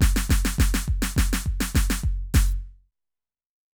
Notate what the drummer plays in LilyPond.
\new DrumStaff \drummode { \time 4/4 \tempo 4 = 102 <bd sn hhp>16 sn16 <hhp bd sn>16 sn16 <bd sn>16 sn16 bd16 sn16 <bd sn>16 sn16 bd16 sn16 <bd sn>16 sn16 <bd sn>8 | <hho bd sn>16 hhp8. r4 r4 r4 | }